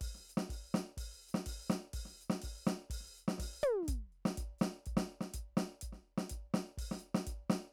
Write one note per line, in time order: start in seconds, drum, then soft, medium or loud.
0.01 open hi-hat medium
0.01 kick soft
0.06 kick soft
0.15 snare soft
0.26 open hi-hat soft
0.26 hi-hat pedal medium
0.37 snare medium
0.50 open hi-hat medium
0.50 kick soft
0.74 snare medium
0.74 hi-hat pedal medium
0.97 open hi-hat medium
0.97 kick soft
1.23 open hi-hat soft
1.29 hi-hat pedal medium
1.34 snare medium
1.46 open hi-hat medium
1.46 kick soft
1.70 snare medium
1.70 hi-hat pedal medium
1.93 open hi-hat medium
1.93 kick soft
1.98 kick soft
2.05 snare soft
2.18 open hi-hat soft
2.18 hi-hat pedal medium
2.30 snare medium
2.42 open hi-hat medium
2.42 kick soft
2.67 snare medium
2.67 hi-hat pedal medium
2.90 open hi-hat medium
2.90 kick soft
2.95 kick soft
3.01 snare soft
3.16 hi-hat pedal soft
3.16 open hi-hat soft
3.28 snare medium
3.38 open hi-hat medium
3.38 kick soft
3.38 snare soft
3.44 kick soft
3.62 hi-hat pedal medium
3.62 high tom loud
3.83 snare soft
3.88 closed hi-hat medium
3.88 kick soft
4.12 closed hi-hat soft
4.25 snare medium
4.38 closed hi-hat medium
4.38 kick soft
4.59 snare medium
4.59 hi-hat pedal soft
4.86 kick soft
4.86 closed hi-hat soft
4.92 kick soft
4.97 snare medium
5.04 hi-hat pedal soft
5.21 snare soft
5.34 closed hi-hat medium
5.34 kick soft
5.39 kick soft
5.57 snare medium
5.81 closed hi-hat medium
5.81 kick soft
5.93 snare soft
6.18 snare medium
6.30 closed hi-hat medium
6.30 kick soft
6.54 snare medium
6.78 open hi-hat medium
6.78 kick soft
6.83 kick soft
6.91 snare soft
6.99 hi-hat pedal medium
7.04 closed hi-hat soft
7.15 snare medium
7.27 closed hi-hat medium
7.27 kick soft
7.50 snare medium